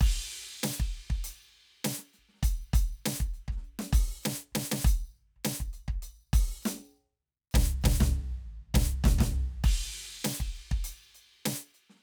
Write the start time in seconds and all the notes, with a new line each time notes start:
0.01 kick, hi-hat pedal, crash
0.34 closed hi-hat
0.64 closed hi-hat, kick, snare
0.80 kick
0.94 closed hi-hat
1.11 kick, crash
1.15 ride
1.25 closed hi-hat
1.56 closed hi-hat
1.85 closed hi-hat, snare
1.99 snare
2.14 closed hi-hat, snare
2.19 kick
2.29 snare
2.35 snare
2.37 snare
2.44 closed hi-hat, kick
2.74 closed hi-hat, kick
3.06 closed hi-hat, snare
3.21 kick
3.35 closed hi-hat
3.49 kick, snare
3.53 ride
3.58 snare
3.61 snare, closed hi-hat
3.80 snare
3.94 kick, percussion
4.24 snare, hi-hat pedal
4.53 kick, snare
4.72 snare
4.85 closed hi-hat, kick
5.37 kick
5.45 closed hi-hat, snare, hi-hat pedal
5.61 kick
5.74 closed hi-hat
5.89 kick
5.93 ride
6.03 closed hi-hat
6.34 kick, percussion
6.63 closed hi-hat, snare, hi-hat pedal
7.52 kick, snare, floor tom, hi-hat pedal
7.82 kick, snare, floor tom, hi-hat pedal
8.01 kick, snare, floor tom
8.09 hi-hat pedal
8.75 kick, snare, floor tom
9.05 kick, snare, floor tom
9.19 kick, snare, floor tom
9.64 kick, crash
10.25 closed hi-hat, snare
10.41 kick
10.56 closed hi-hat
10.72 kick, crash
10.85 closed hi-hat
11.15 closed hi-hat
11.46 closed hi-hat, snare
11.75 closed hi-hat
11.90 snare
11.96 snare
11.99 snare